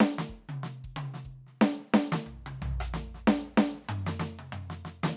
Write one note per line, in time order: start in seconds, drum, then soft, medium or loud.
0.00 snare loud
0.18 snare loud
0.29 kick soft
0.49 high tom loud
0.63 snare medium
0.84 kick soft
0.96 high tom loud
1.14 snare medium
1.25 kick soft
1.47 snare soft
1.51 snare soft
1.55 snare soft
1.58 snare soft
1.61 snare loud
1.78 snare soft
1.83 snare soft
1.86 snare soft
1.92 snare soft
1.92 snare loud
2.12 snare loud
2.26 floor tom medium
2.46 high tom loud
2.62 floor tom loud
2.80 cross-stick medium
2.94 snare medium
3.14 snare soft
3.27 snare loud
3.44 snare soft
3.47 snare soft
3.51 snare soft
3.54 snare soft
3.57 snare loud
3.74 snare soft
3.78 snare soft
3.81 snare soft
3.85 snare soft
3.85 mid tom loud
4.06 snare loud
4.19 snare loud
4.39 high tom medium
4.52 mid tom loud
4.70 snare medium
4.85 snare medium
5.03 open hi-hat loud
5.03 snare loud
5.12 hi-hat pedal medium